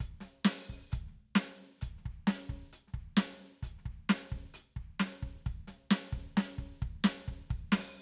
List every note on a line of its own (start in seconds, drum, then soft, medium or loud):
0.01 closed hi-hat medium
0.01 kick soft
0.21 closed hi-hat medium
0.21 snare medium
0.45 open hi-hat loud
0.45 snare loud
0.70 kick soft
0.91 closed hi-hat loud
0.91 kick medium
0.91 hi-hat pedal medium
1.09 snare soft
1.13 closed hi-hat soft
1.36 closed hi-hat loud
1.36 snare loud
1.57 closed hi-hat soft
1.78 closed hi-hat loud
1.78 snare soft
1.83 kick soft
1.99 snare soft
2.03 kick soft
2.03 closed hi-hat soft
2.28 closed hi-hat loud
2.28 snare loud
2.50 kick soft
2.50 closed hi-hat soft
2.70 closed hi-hat loud
2.70 snare soft
2.88 snare soft
2.94 kick soft
2.94 closed hi-hat soft
3.18 closed hi-hat loud
3.18 snare loud
3.63 closed hi-hat medium
3.63 kick soft
3.79 snare soft
3.86 kick soft
3.86 closed hi-hat soft
4.10 closed hi-hat loud
4.10 snare loud
4.32 kick soft
4.32 closed hi-hat soft
4.55 closed hi-hat loud
4.77 kick soft
4.77 closed hi-hat soft
5.00 closed hi-hat loud
5.00 snare loud
5.22 closed hi-hat soft
5.22 kick soft
5.47 closed hi-hat medium
5.47 kick medium
5.68 closed hi-hat medium
5.68 snare soft
5.91 closed hi-hat loud
5.91 snare loud
6.13 closed hi-hat soft
6.13 kick medium
6.38 closed hi-hat loud
6.38 snare loud
6.59 closed hi-hat soft
6.59 kick soft
6.82 kick medium
6.82 closed hi-hat medium
7.05 closed hi-hat loud
7.05 snare loud
7.28 closed hi-hat soft
7.28 kick soft
7.28 snare soft
7.50 kick medium
7.50 open hi-hat medium
7.73 open hi-hat loud
7.73 snare loud
7.79 snare medium
7.91 snare soft